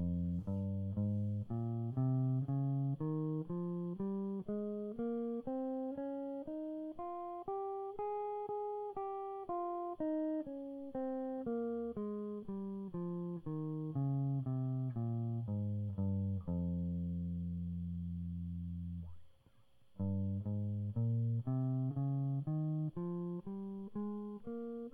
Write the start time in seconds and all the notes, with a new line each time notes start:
0.00 F2
0.50 G2
0.99 G#2
1.52 A#2
1.99 C3
2.50 C#3
3.02 D#3
3.51 F3
4.01 G3
4.50 G#3
5.00 A#3
5.48 C4
5.98 C#4
6.48 D#4
6.99 F4
7.49 G4
8.00 G#4
8.50 G#4
8.97 G4
9.50 F4
10.01 D#4
10.48 C#4
10.96 C4
11.47 A#3
11.98 G#3
12.50 G3
12.96 F3
13.48 D#3
13.97 C#3
14.48 C3
14.99 A#2
15.51 G#2
15.91 G2
16.01 G2
16.51 F2
20.02 G2
20.48 G#2
20.98 A#2
21.49 C3
21.98 C#3
22.49 D#3
22.98 F3
23.51 G3
23.97 G#3
24.50 A#3